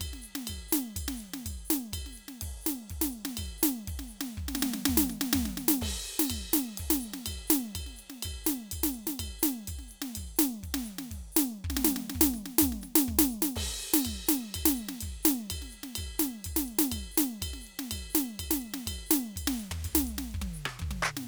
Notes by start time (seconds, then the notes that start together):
0.01 kick, ride bell
0.07 kick
0.14 snare
0.22 hi-hat pedal, ride
0.36 snare
0.48 kick, ride bell
0.55 kick
0.69 hi-hat pedal
0.73 snare
0.96 kick, ride bell
1.02 kick
1.08 snare
1.17 hi-hat pedal
1.21 ride
1.34 snare
1.46 kick, ride bell
1.52 kick
1.65 hi-hat pedal
1.71 snare
1.93 kick, ride bell
1.99 kick
2.07 snare
2.13 hi-hat pedal
2.18 ride
2.29 snare
2.42 kick, ride
2.62 hi-hat pedal
2.67 snare
2.90 kick, ride
2.96 kick
3.02 snare
3.10 hi-hat pedal, ride
3.25 snare
3.37 kick, ride bell
3.45 kick, ride
3.58 hi-hat pedal
3.63 snare
3.88 kick, ride
3.94 kick
3.99 snare
4.08 hi-hat pedal
4.21 snare
4.38 kick, snare
4.44 kick
4.49 snare
4.55 snare, hi-hat pedal
4.63 snare
4.74 snare
4.86 kick, snare
4.96 kick, snare
5.09 snare, hi-hat pedal
5.22 snare
5.33 kick, snare
5.42 kick
5.46 snare
5.57 snare, hi-hat pedal
5.69 snare
5.82 kick, crash
5.89 kick
6.06 hi-hat pedal
6.20 snare
6.30 kick, ride bell
6.37 kick
6.53 snare, hi-hat pedal
6.78 kick, ride
6.91 snare
7.01 hi-hat pedal, ride
7.14 snare
7.26 kick, ride bell
7.33 kick
7.48 snare, hi-hat pedal
7.69 hi-hat pedal
7.76 kick, ride bell
7.82 kick
7.87 snare
7.97 hi-hat pedal, ride
8.10 snare
8.23 kick, ride bell
8.31 kick
8.45 snare, hi-hat pedal
8.72 kick, ride bell
8.84 snare
8.92 hi-hat pedal, ride
9.07 snare
9.20 kick, ride bell
9.26 kick
9.40 snare, hi-hat pedal
9.68 kick, ride bell
9.74 kick
9.79 snare
9.88 hi-hat pedal, ride
10.02 snare
10.16 kick, ride bell
10.37 snare, hi-hat pedal
10.64 kick, ride
10.74 snare
10.84 hi-hat pedal, ride
10.99 snare
11.11 kick, ride
11.17 kick
11.32 hi-hat pedal
11.37 snare
11.65 kick
11.70 kick, snare
11.77 snare
11.85 snare, hi-hat pedal
11.97 snare
12.10 snare
12.15 kick
12.21 snare
12.34 snare, hi-hat pedal
12.46 snare
12.59 kick, snare
12.73 snare
12.82 snare, hi-hat pedal
12.96 snare
13.08 kick, snare
13.15 kick
13.19 snare
13.30 hi-hat pedal
13.43 snare
13.56 kick, crash
13.63 kick
13.67 snare
13.79 hi-hat pedal
13.94 snare
14.05 kick, ride bell
14.27 snare, hi-hat pedal
14.55 kick, ride bell
14.62 kick
14.66 snare
14.76 hi-hat pedal, ride
14.89 snare
14.97 hi-hat pedal
15.01 kick, ride bell
15.09 kick
15.23 snare, hi-hat pedal
15.51 kick, ride bell
15.62 snare
15.70 hi-hat pedal, ride
15.84 snare
15.96 kick, ride bell
16.04 kick
16.19 snare, hi-hat pedal
16.26 snare
16.39 hi-hat pedal
16.45 kick, ride bell
16.52 kick
16.57 snare
16.65 hi-hat pedal, ride
16.79 snare
16.92 kick, ride bell
16.98 kick
17.12 hi-hat pedal
17.18 snare
17.42 kick, ride bell
17.48 kick
17.54 snare
17.61 hi-hat pedal
17.67 ride
17.79 snare
17.91 kick, ride bell
18.10 hi-hat pedal
18.15 snare
18.33 hi-hat pedal
18.40 kick, ride bell
18.45 kick
18.51 snare
18.58 hi-hat pedal
18.62 ride
18.74 snare
18.87 kick, ride bell
19.07 hi-hat pedal
19.11 snare
19.36 kick, ride bell
19.42 kick
19.48 snare
19.57 hi-hat pedal, ride
19.72 floor tom
19.85 kick, ride bell
19.92 kick, snare
20.06 hi-hat pedal, ride
20.19 snare
20.32 kick, ride
20.41 kick, high tom
20.54 hi-hat pedal
20.66 cross-stick
20.80 kick, mid tom
20.89 kick, high tom
21.03 percussion, hi-hat pedal
21.17 snare
21.23 snare